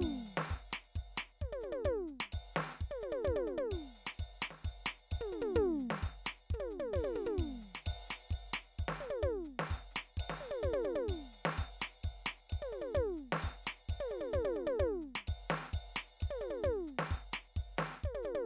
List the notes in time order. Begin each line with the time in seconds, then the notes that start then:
0.01 kick, ride bell
0.25 hi-hat pedal
0.37 snare
0.49 kick, ride bell
0.56 kick
0.70 snare, hi-hat pedal
0.95 kick, ride bell
1.16 snare, hi-hat pedal
1.41 kick, high tom
1.52 high tom
1.61 hi-hat pedal, high tom
1.72 high tom
1.85 kick, high tom
2.07 hi-hat pedal
2.20 snare
2.32 kick, ride
2.53 snare, hi-hat pedal
2.80 kick, ride
2.90 high tom
3.00 hi-hat pedal, high tom
3.11 high tom
3.24 kick, high tom
3.35 high tom
3.46 hi-hat pedal, high tom
3.57 high tom
3.71 kick, ride bell
3.95 hi-hat pedal
4.06 snare
4.19 kick, ride bell
4.40 snare, hi-hat pedal
4.50 snare
4.64 kick, ride bell
4.86 snare, hi-hat pedal
5.11 kick, ride
5.17 kick, mid tom
5.32 hi-hat pedal, mid tom
5.41 mid tom
5.55 kick, mid tom
5.65 mid tom
5.79 hi-hat pedal
5.90 snare
6.02 kick, ride bell
6.24 snare, hi-hat pedal
6.50 kick, mid tom
6.59 high tom
6.70 hi-hat pedal
6.79 high tom
6.91 high tom, crash
6.96 kick
7.03 high tom
7.14 hi-hat pedal, mid tom
7.26 mid tom
7.38 kick, ride bell
7.61 hi-hat pedal
7.75 snare
7.86 kick, ride
7.92 kick
8.06 snare, hi-hat pedal
8.30 kick, ride bell
8.53 snare, hi-hat pedal
8.78 kick, ride bell
8.88 snare
8.98 hi-hat pedal, high tom
9.10 high tom
9.22 kick, high tom
9.44 hi-hat pedal
9.59 snare
9.70 kick, ride bell
9.77 kick
9.90 hi-hat pedal
9.96 snare
10.17 kick, ride
10.29 snare
10.37 hi-hat pedal, high tom
10.50 high tom
10.62 kick, high tom
10.70 kick, high tom
10.83 hi-hat pedal, high tom
10.95 high tom
11.08 kick, ride bell
11.31 hi-hat pedal, ride
11.45 snare
11.58 kick, ride
11.79 snare, hi-hat pedal
12.03 kick, ride bell
12.11 kick
12.25 snare, hi-hat pedal
12.49 kick, ride
12.61 high tom
12.70 hi-hat pedal, high tom
12.81 high tom
12.94 kick, high tom
13.17 hi-hat pedal
13.32 snare
13.42 kick, ride bell
13.62 hi-hat pedal
13.67 snare
13.89 kick, ride
13.94 kick
14.00 high tom
14.08 hi-hat pedal, high tom
14.20 high tom
14.33 kick, high tom
14.44 high tom
14.54 hi-hat pedal, high tom
14.66 high tom
14.79 kick, high tom
15.01 hi-hat pedal
15.15 snare
15.27 kick, ride bell
15.48 snare, hi-hat pedal
15.73 kick, ride bell
15.95 snare, hi-hat pedal
16.20 kick, ride
16.30 high tom
16.40 hi-hat pedal, high tom
16.50 high tom
16.63 kick, high tom
16.87 hi-hat pedal
16.99 snare
17.11 kick, ride bell
17.32 snare, hi-hat pedal
17.56 kick, ride bell
17.77 snare, hi-hat pedal
18.03 kick, high tom
18.14 high tom
18.22 hi-hat pedal, high tom
18.34 high tom